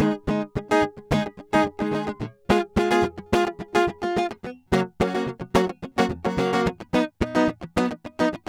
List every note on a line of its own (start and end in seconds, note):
0.01 0.20 G#3
0.01 0.22 D#4
0.01 0.23 G#4
0.28 0.50 G#3
0.28 0.52 D#4
0.59 0.70 G#4
0.72 0.90 G#3
0.72 0.95 D#4
0.72 0.95 G#4
1.13 1.28 G#3
1.13 1.25 D#4
1.13 1.34 G#4
1.54 1.71 G#3
1.54 1.74 D#4
1.54 1.74 G#4
1.80 1.93 G#3
1.80 1.94 D#4
1.80 1.95 G#4
1.93 2.10 G#3
1.93 2.05 D#4
1.93 2.04 G#4
2.10 2.28 G#3
2.51 2.67 G#3
2.51 2.69 F4
2.51 2.67 G#4
2.77 2.93 G#3
2.77 2.92 F4
2.77 2.92 G#4
2.92 3.13 G#3
2.92 3.11 B3
2.92 3.14 F4
2.92 3.17 G#4
3.34 3.48 G#3
3.34 3.57 F4
3.34 3.46 G#4
3.76 3.95 G#3
3.76 3.96 F4
3.76 3.89 G#4
4.04 4.31 F4
4.73 4.92 F#3
4.73 4.92 A#3
5.01 5.37 F#3
5.01 5.12 A#3
5.01 5.16 C#4
5.01 5.15 F#4
5.16 5.29 A#3
5.16 5.30 C#4
5.16 5.38 F#4
5.56 5.71 F#3
5.56 5.67 A#3
5.56 5.77 C#4
5.56 5.69 F#4
5.99 6.08 F#3
5.99 6.09 A#3
5.99 6.17 C#4
5.99 6.12 F#4
6.25 6.38 F#3
6.25 6.39 A#3
6.25 6.40 C#4
6.25 6.42 F#4
6.39 6.56 F#3
6.39 6.55 A#3
6.39 6.54 C#4
6.39 6.54 F#4
6.54 6.77 F#3
6.54 6.74 A#3
6.54 6.76 C#4
6.54 6.67 F#4
6.94 7.09 F#3
6.94 7.11 B3
6.94 7.13 D#4
7.22 7.31 F#3
7.22 7.36 B3
7.22 7.36 D#4
7.37 7.55 B3
7.37 7.57 D#4
7.78 7.92 F#3
7.78 7.90 B3
7.78 7.99 D#4
8.21 8.30 F#3
8.21 8.32 B3
8.21 8.34 D#4